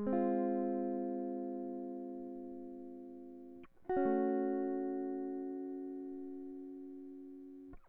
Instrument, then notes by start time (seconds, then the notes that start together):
electric guitar
0.00 G#3
0.07 C4
0.13 F4
3.89 F#4
3.97 C#4
4.06 A3